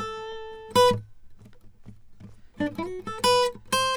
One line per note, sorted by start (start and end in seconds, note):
0.01 0.27 A4
0.76 0.96 B4
2.62 2.73 D4
2.80 3.04 F#4
3.08 3.21 A4
3.25 3.51 B4
3.73 3.96 C5